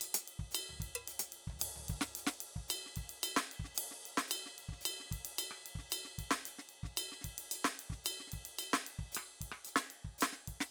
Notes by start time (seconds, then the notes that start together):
0.01 hi-hat pedal, ride bell
0.14 closed hi-hat
0.28 ride
0.39 kick
0.51 hi-hat pedal, ride bell
0.69 floor tom
0.80 kick, ride
0.95 percussion
1.08 hi-hat pedal, ride
1.19 closed hi-hat
1.32 ride
1.47 kick, floor tom
1.59 hi-hat pedal, ride
1.76 floor tom
1.88 kick, ride
1.96 kick
2.01 snare
2.15 hi-hat pedal, ride
2.27 snare
2.40 ride
2.56 kick
2.68 hi-hat pedal, ride bell
2.86 snare
2.95 kick, snare, ride
3.03 snare
3.09 ride
3.23 hi-hat pedal, ride bell
3.36 snare
3.51 ride
3.59 kick
3.65 snare
3.75 hi-hat pedal, ride
3.91 snare
4.05 ride
4.17 snare
4.28 hi-hat pedal, ride bell
4.46 snare
4.58 ride
4.69 kick, snare
4.81 hi-hat pedal
4.85 ride bell
5.00 snare
5.05 snare
5.11 kick, snare, ride
5.16 snare
5.25 ride
5.38 hi-hat pedal, ride bell
5.51 cross-stick
5.66 ride
5.75 kick, snare
5.90 hi-hat pedal, ride bell
6.05 snare
6.18 kick, ride
6.31 snare
6.45 hi-hat pedal, ride
6.58 snare
6.69 ride
6.83 kick, snare
6.96 hi-hat pedal, ride bell
7.12 snare
7.21 kick, snare, ride
7.38 ride
7.51 hi-hat pedal, ride bell
7.64 snare
7.79 ride
7.90 kick, snare
8.04 hi-hat pedal, ride bell
8.20 snare
8.27 snare
8.31 kick, snare, ride
8.45 ride
8.59 hi-hat pedal, ride bell
8.73 snare
8.86 ride
8.99 kick
9.12 hi-hat pedal, ride bell
9.17 cross-stick
9.41 kick, ride
9.52 cross-stick
9.65 hi-hat pedal, ride bell
9.76 snare
9.90 ride
10.04 kick
10.18 hi-hat pedal, ride bell
10.22 snare
10.32 snare
10.48 kick, ride
10.60 snare